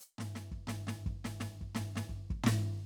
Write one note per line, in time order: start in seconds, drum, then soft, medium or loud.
0.00 hi-hat pedal medium
0.18 snare medium
0.18 floor tom medium
0.35 snare medium
0.35 floor tom soft
0.51 kick soft
0.67 snare medium
0.67 floor tom medium
0.87 snare medium
0.87 floor tom medium
1.06 kick soft
1.24 snare medium
1.24 floor tom medium
1.40 snare medium
1.40 floor tom medium
1.61 kick soft
1.75 snare medium
1.75 floor tom medium
1.96 snare medium
1.96 floor tom medium
2.09 kick soft
2.30 kick medium
2.44 snare loud
2.44 floor tom loud